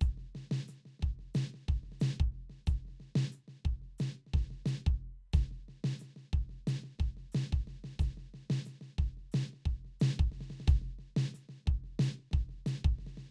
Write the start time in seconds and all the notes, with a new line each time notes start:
0.01 kick, snare, hi-hat pedal
0.18 snare
0.35 snare
0.51 snare
0.68 snare, hi-hat pedal
0.86 snare
1.00 kick, snare
1.19 snare
1.34 snare, hi-hat pedal
1.54 snare
1.68 kick, snare
1.83 snare
1.92 snare
2.00 snare, hi-hat pedal
2.20 kick
2.32 snare
2.50 snare
2.67 kick, snare, hi-hat pedal
2.85 snare
2.88 snare
3.00 snare
3.16 snare
3.32 snare, hi-hat pedal
3.48 snare
3.65 kick, snare
3.82 snare
3.98 snare, hi-hat pedal
4.27 snare
4.34 kick, snare
4.51 snare
4.66 snare, hi-hat pedal
4.87 kick, snare
5.33 kick, snare, hi-hat pedal
5.51 snare
5.69 snare
5.84 snare
5.99 snare, hi-hat pedal
6.16 snare
6.33 kick, snare
6.49 snare
6.67 snare, hi-hat pedal
6.84 snare
6.99 kick, snare
7.17 snare
7.32 snare, hi-hat pedal
7.52 kick, snare
7.68 snare
7.84 snare
7.99 kick, snare, hi-hat pedal
8.18 snare
8.34 snare
8.50 snare
8.65 snare, hi-hat pedal
8.81 snare
8.98 kick, snare
9.17 snare
9.32 snare, hi-hat pedal
9.53 snare
9.66 kick, snare
9.85 snare
10.00 snare, hi-hat pedal
10.18 kick, snare
10.32 snare
10.41 snare
10.50 snare
10.60 snare
10.68 kick, snare, hi-hat pedal
10.82 snare
10.99 snare
11.17 snare
11.34 snare, hi-hat pedal
11.49 snare
11.66 kick, snare
11.84 snare
11.99 snare, hi-hat pedal
12.19 snare
12.32 kick, snare
12.49 snare
12.66 snare, hi-hat pedal
12.85 kick, snare
12.99 snare
13.07 snare
13.18 snare